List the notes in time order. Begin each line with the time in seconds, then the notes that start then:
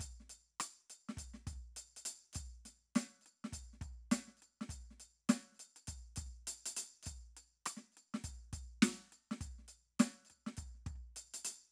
0.01 kick, percussion
0.21 snare
0.26 snare
0.29 snare, percussion
0.61 cross-stick, percussion
0.91 percussion
1.10 snare
1.18 kick, percussion
1.35 snare
1.48 kick, percussion
1.54 kick
1.56 kick
1.77 percussion
1.98 percussion
2.06 percussion
2.34 percussion
2.36 kick, percussion
2.66 snare, percussion
2.96 snare, percussion
3.00 percussion
3.22 percussion
3.27 percussion
3.45 snare
3.54 kick, percussion
3.74 snare
3.82 kick, percussion
4.12 snare, percussion
4.29 snare
4.38 percussion
4.43 percussion
4.62 snare
4.70 kick, percussion
4.92 snare
4.98 snare, percussion
5.30 snare, percussion
5.53 snare, percussion
5.61 percussion
5.77 percussion
5.88 kick, percussion
6.17 kick, percussion
6.27 kick
6.48 percussion
6.67 percussion
6.78 percussion
7.04 percussion
7.07 kick, percussion
7.38 percussion
7.67 cross-stick, percussion
7.78 snare
7.93 percussion
7.98 percussion
8.15 snare
8.25 kick, percussion
8.54 kick, percussion
8.83 snare, percussion
9.13 percussion
9.32 snare
9.42 kick, percussion
9.47 kick
9.60 snare
9.63 snare
9.69 percussion
10.00 snare, percussion
10.26 percussion
10.31 kick, percussion
10.48 snare
10.58 kick, percussion
10.75 snare
10.87 kick, percussion
10.97 kick
11.17 percussion
11.35 percussion
11.46 percussion